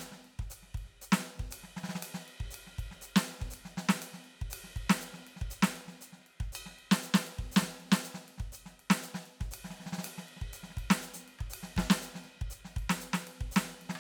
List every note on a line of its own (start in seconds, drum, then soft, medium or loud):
0.01 hi-hat pedal medium
0.01 ride bell soft
0.12 snare soft
0.25 ride soft
0.40 kick soft
0.40 snare soft
0.51 hi-hat pedal medium
0.51 ride medium
0.63 snare soft
0.75 kick soft
0.75 ride soft
0.85 snare soft
1.02 hi-hat pedal medium
1.02 ride medium
1.13 snare loud
1.20 snare soft
1.39 kick soft
1.39 snare soft
1.52 hi-hat pedal medium
1.52 ride loud
1.64 snare soft
1.77 snare soft
1.84 snare medium
1.90 snare medium
1.96 snare medium
2.03 hi-hat pedal medium
2.03 ride loud
2.15 snare medium
2.29 ride soft
2.41 kick soft
2.41 snare soft
2.51 hi-hat pedal medium
2.51 ride medium
2.67 snare soft
2.79 kick soft
2.79 ride medium
2.92 snare soft
3.02 hi-hat pedal loud
3.06 ride medium
3.17 snare loud
3.24 hi-hat pedal soft
3.29 ride medium
3.41 kick soft
3.41 snare soft
3.51 hi-hat pedal medium
3.51 ride medium
3.66 snare soft
3.78 snare medium
3.90 snare loud
3.96 snare soft
4.02 hi-hat pedal medium
4.02 ride loud
4.14 snare soft
4.23 snare soft
4.23 ride soft
4.36 snare soft
4.40 kick soft
4.40 snare soft
4.51 hi-hat pedal medium
4.51 ride loud
4.65 snare soft
4.77 kick soft
4.77 ride soft
4.90 snare loud
4.96 cross-stick soft
5.01 hi-hat pedal medium
5.01 ride medium
5.14 snare soft
5.28 ride medium
5.37 snare soft
5.42 kick soft
5.51 hi-hat pedal medium
5.51 ride bell medium
5.63 snare loud
5.69 cross-stick medium
5.75 hi-hat pedal soft
5.75 ride soft
5.89 snare soft
6.02 hi-hat pedal medium
6.02 ride bell soft
6.13 snare soft
6.21 snare soft
6.27 ride soft
6.41 kick soft
6.41 snare soft
6.53 hi-hat pedal medium
6.53 ride bell loud
6.67 snare soft
6.76 hi-hat pedal soft
6.76 ride soft
6.92 snare loud
6.98 cross-stick soft
7.03 hi-hat pedal loud
7.03 ride soft
7.15 snare loud
7.25 hi-hat pedal medium
7.25 ride medium
7.39 kick soft
7.52 hi-hat pedal medium
7.57 snare loud
7.57 ride bell medium
7.63 snare medium
7.74 hi-hat pedal soft
7.81 ride soft
7.93 snare loud
8.05 hi-hat pedal loud
8.05 ride bell soft
8.15 snare soft
8.29 ride soft
8.38 kick soft
8.38 snare soft
8.53 hi-hat pedal medium
8.53 ride bell medium
8.66 snare soft
8.80 ride soft
8.91 snare loud
9.03 hi-hat pedal medium
9.03 ride medium
9.15 snare medium
9.24 hi-hat pedal soft
9.24 ride soft
9.41 kick soft
9.41 snare soft
9.52 hi-hat pedal medium
9.52 ride loud
9.65 snare soft
9.71 snare soft
9.76 snare soft
9.80 snare soft
9.87 snare soft
9.93 snare medium
9.99 snare medium
10.04 snare soft
10.04 hi-hat pedal loud
10.04 ride loud
10.19 snare soft
10.26 hi-hat pedal soft
10.26 ride soft
10.37 snare soft
10.42 kick soft
10.42 snare soft
10.54 hi-hat pedal medium
10.54 ride medium
10.64 snare soft
10.71 snare soft
10.78 kick soft
10.78 ride medium
10.91 snare loud
11.03 hi-hat pedal medium
11.03 ride medium
11.15 closed hi-hat loud
11.29 ride soft
11.40 kick soft
11.40 cross-stick soft
11.51 hi-hat pedal medium
11.51 ride loud
11.64 snare soft
11.73 hi-hat pedal soft
11.77 kick soft
11.77 snare loud
11.91 snare loud
12.02 hi-hat pedal medium
12.02 ride bell soft
12.16 snare soft
12.24 snare soft
12.24 hi-hat pedal soft
12.24 ride soft
12.37 snare soft
12.42 kick soft
12.42 snare soft
12.51 hi-hat pedal medium
12.51 ride bell soft
12.65 snare soft
12.72 hi-hat pedal soft
12.77 kick soft
12.77 ride soft
12.83 kick soft
12.90 snare loud
13.01 hi-hat pedal loud
13.01 ride medium
13.14 snare medium
13.28 ride medium
13.41 kick soft
13.52 hi-hat pedal loud
13.57 snare loud
13.57 ride medium
13.66 snare soft
13.82 ride soft
13.90 snare medium
13.96 cross-stick medium